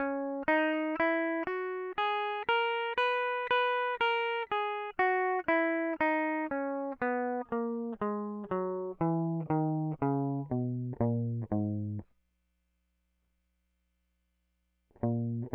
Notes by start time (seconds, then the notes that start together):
0.00 C#4
0.48 D#4
1.00 E4
1.47 F#4
1.98 G#4
2.49 A#4
2.98 B4
3.51 B4
4.01 A#4
4.52 G#4
4.99 F#4
5.49 E4
6.01 D#4
6.52 C#4
7.02 B3
7.53 A#3
8.02 G#3
8.52 F#3
9.02 E3
9.51 D#3
10.03 C#3
10.53 B2
11.02 A#2
11.53 G#2
15.04 A#2